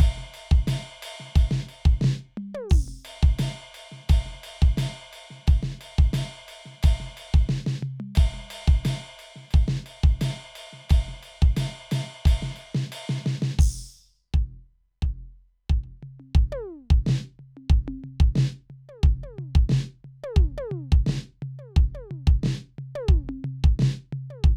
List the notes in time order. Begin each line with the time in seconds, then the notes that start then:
0.01 kick, ride
0.19 snare
0.36 ride
0.53 kick
0.69 snare, ride
1.04 ride
1.22 snare
1.37 kick, ride
1.53 snare
1.70 ride bell
1.87 kick
1.99 kick
2.03 snare
2.06 snare
2.39 mid tom
2.56 high tom
2.72 kick, crash
2.90 high tom
3.07 ride
3.25 kick
3.41 snare, ride
3.76 ride
3.94 snare
4.11 kick, ride
4.28 snare
4.45 ride
4.64 kick
4.79 snare, ride
5.15 ride
5.32 snare
5.49 kick, ride
5.65 snare
5.83 ride
6.00 kick
6.15 snare, ride
6.50 ride
6.67 snare
6.85 kick, ride
7.02 snare
7.19 ride
7.36 kick
7.51 snare
7.68 snare
7.85 floor tom
8.02 mid tom
8.17 kick, ride
8.36 mid tom
8.52 ride bell
8.69 kick
8.87 snare, ride
9.21 ride
9.38 snare
9.53 kick, ride
9.70 snare
9.88 ride
10.05 kick
10.23 snare, ride
10.57 ride
10.75 snare
10.91 kick, ride
11.10 snare
11.25 ride
11.44 kick, snare
11.59 snare, ride
11.93 snare, ride
12.27 kick, ride
12.44 snare
12.58 ride bell
12.77 snare
12.94 ride
13.11 snare
13.28 snare
13.40 kick
13.44 snare
13.58 kick, snare, crash
14.36 kick
15.04 kick
15.71 kick
15.86 kick
16.05 floor tom
16.22 high tom
16.37 kick
16.54 high tom
16.92 kick
17.08 snare
17.11 snare
17.41 floor tom
17.59 high tom
17.72 kick
17.90 high tom
18.06 floor tom
18.22 kick
18.37 snare
18.40 snare
18.72 floor tom
18.90 high tom
19.05 kick, floor tom
19.25 high tom
19.40 floor tom
19.57 kick
19.71 snare
19.74 snare
20.06 floor tom
20.25 high tom
20.38 kick
20.59 high tom
20.73 floor tom
20.94 kick
21.08 snare
21.11 snare
21.44 floor tom
21.60 high tom
21.78 kick, floor tom
21.96 high tom
22.13 floor tom
22.29 kick
22.45 snare
22.48 snare
22.80 floor tom
22.97 high tom
23.10 kick
23.15 floor tom
23.31 high tom
23.46 floor tom
23.66 kick
23.81 snare
23.84 snare
24.14 floor tom
24.32 high tom
24.46 kick